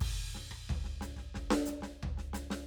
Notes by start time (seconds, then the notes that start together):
0.01 kick, crash
0.33 snare, hi-hat pedal
0.52 kick, cross-stick
0.70 kick, floor tom
0.85 snare
1.01 snare, hi-hat pedal
1.17 kick, snare
1.35 kick, snare
1.51 snare
1.66 snare, hi-hat pedal
1.81 kick, snare
2.03 kick, floor tom
2.18 snare
2.34 snare, hi-hat pedal
2.51 snare